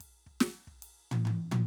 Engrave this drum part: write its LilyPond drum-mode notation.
\new DrumStaff \drummode { \time 4/4 \tempo 4 = 144 \tuplet 3/2 { <bd cymr>8 r8 bd8 <sn cymr>8 r8 bd8 cymr8 r8 <tomfh tommh>8 <tomfh tommh>8 r8 <tommh tomfh>8 } | }